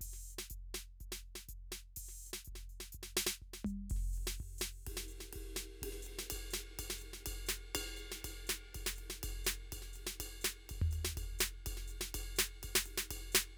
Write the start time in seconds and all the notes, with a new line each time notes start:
0.01 open hi-hat, kick
0.06 kick
0.13 snare
0.28 hi-hat pedal, open hi-hat
0.39 snare
0.50 closed hi-hat, kick
0.74 snare
1.01 kick, closed hi-hat
1.12 snare
1.26 closed hi-hat
1.36 snare
1.49 closed hi-hat, kick
1.72 snare
1.96 open hi-hat, kick
2.09 snare
2.22 open hi-hat
2.27 hi-hat pedal
2.33 snare
2.45 kick, closed hi-hat
2.53 kick, snare
2.69 hi-hat pedal, open hi-hat
2.80 snare
2.92 kick, closed hi-hat
3.03 snare
3.17 snare, hi-hat pedal
3.27 snare
3.42 kick, snare
3.54 snare
3.65 kick, hi-hat pedal, mid tom
3.71 kick
3.90 kick, crash
3.96 snare
4.13 hi-hat pedal
4.18 ride
4.27 snare
4.40 kick, ride
4.58 snare, hi-hat pedal
4.87 kick, ride
4.97 snare
5.08 hi-hat pedal
5.21 snare
5.33 kick, ride
5.56 snare, hi-hat pedal
5.82 kick, ride
5.92 snare
6.03 hi-hat pedal
6.07 ride
6.19 snare
6.30 kick, ride bell
6.51 snare, hi-hat pedal
6.79 kick, ride bell
6.90 snare
6.98 hi-hat pedal, ride
7.14 snare
7.26 kick, ride bell
7.47 snare, hi-hat pedal
7.75 kick, ride bell
7.81 kick
7.87 snare
7.97 hi-hat pedal, ride
8.12 snare
8.25 kick, ride bell
8.30 kick
8.47 snare, hi-hat pedal
8.75 kick, ride bell
8.86 snare
8.96 hi-hat pedal, ride
9.10 snare
9.23 kick, ride bell
9.45 snare, hi-hat pedal
9.72 kick, ride bell
9.78 kick
9.82 snare
9.93 hi-hat pedal, ride
10.07 snare
10.20 kick, ride bell
10.42 snare, hi-hat pedal
10.69 kick, ride bell
10.82 floor tom
10.91 hi-hat pedal, ride bell
11.05 snare
11.17 kick, ride bell
11.39 snare, hi-hat pedal
11.66 kick, ride bell
11.77 snare
11.88 hi-hat pedal, ride
12.01 snare
12.15 kick, ride bell
12.36 snare, hi-hat pedal
12.63 kick, ride bell
12.69 kick
12.76 snare
12.84 hi-hat pedal, ride
12.98 snare
13.11 kick, ride bell
13.32 snare, hi-hat pedal